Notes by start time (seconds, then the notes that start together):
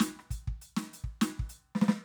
0.01 closed hi-hat, snare
0.20 cross-stick
0.32 closed hi-hat, kick
0.48 kick
0.62 closed hi-hat
0.78 snare
0.94 closed hi-hat
1.05 kick
1.22 closed hi-hat, snare
1.40 kick
1.50 closed hi-hat
1.76 snare
1.82 snare
1.89 snare